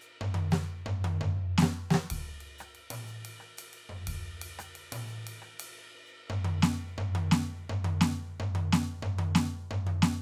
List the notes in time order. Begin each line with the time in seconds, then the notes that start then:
0.01 hi-hat pedal
0.21 floor tom
0.34 high tom
0.51 snare, hi-hat pedal
0.86 floor tom
1.04 high tom
1.21 floor tom
1.58 snare
1.62 snare
1.91 snare
1.94 snare
2.10 kick, ride
2.41 ride
2.58 cross-stick, hi-hat pedal
2.75 ride
2.90 mid tom, ride
3.07 hi-hat pedal
3.25 ride
3.40 cross-stick
3.57 hi-hat pedal, ride
3.73 ride
3.89 floor tom
4.07 kick, ride
4.42 ride
4.59 cross-stick, hi-hat pedal
4.75 ride
4.92 mid tom, ride
5.08 hi-hat pedal
5.27 ride
5.42 cross-stick
5.59 hi-hat pedal, ride
6.06 hi-hat pedal
6.30 floor tom
6.44 high tom
6.59 snare, hi-hat pedal
6.98 floor tom
7.15 high tom
7.31 snare
7.69 floor tom
7.84 high tom
8.01 snare
8.40 floor tom
8.55 high tom
8.73 snare
9.02 floor tom
9.19 high tom
9.35 snare
9.71 floor tom
9.87 high tom
10.02 snare